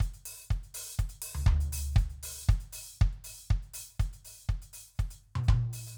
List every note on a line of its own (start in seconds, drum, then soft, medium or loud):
0.01 closed hi-hat medium
0.01 kick medium
0.14 closed hi-hat soft
0.26 open hi-hat loud
0.40 open hi-hat soft
0.44 hi-hat pedal soft
0.51 kick medium
0.51 closed hi-hat soft
0.64 closed hi-hat soft
0.75 open hi-hat loud
0.89 open hi-hat soft
0.94 hi-hat pedal soft
1.00 kick medium
1.00 closed hi-hat medium
1.10 closed hi-hat medium
1.23 open hi-hat loud
1.36 floor tom loud
1.42 hi-hat pedal soft
1.47 kick loud
1.47 floor tom loud
1.61 closed hi-hat soft
1.73 open hi-hat loud
1.87 open hi-hat soft
1.93 kick loud
1.93 hi-hat pedal soft
1.99 closed hi-hat soft
2.10 closed hi-hat soft
2.19 kick soft
2.24 open hi-hat loud
2.37 open hi-hat soft
2.45 hi-hat pedal soft
2.50 closed hi-hat soft
2.50 kick loud
2.61 closed hi-hat soft
2.73 open hi-hat loud
2.87 open hi-hat soft
2.97 hi-hat pedal soft
3.02 closed hi-hat soft
3.02 kick loud
3.14 closed hi-hat soft
3.25 open hi-hat loud
3.40 open hi-hat soft
3.48 kick loud
3.48 hi-hat pedal soft
3.63 closed hi-hat soft
3.74 open hi-hat loud
3.91 open hi-hat soft
3.95 hi-hat pedal soft
4.00 closed hi-hat medium
4.00 kick medium
4.14 closed hi-hat soft
4.26 open hi-hat medium
4.40 open hi-hat soft
4.44 hi-hat pedal soft
4.50 kick medium
4.50 closed hi-hat soft
4.63 closed hi-hat soft
4.74 open hi-hat medium
4.89 open hi-hat soft
4.96 hi-hat pedal soft
5.00 kick medium
5.00 closed hi-hat soft
5.11 closed hi-hat medium
5.24 open hi-hat soft
5.36 mid tom loud
5.44 hi-hat pedal soft
5.49 kick loud
5.49 mid tom loud
5.74 open hi-hat medium
5.88 open hi-hat medium
5.94 hi-hat pedal soft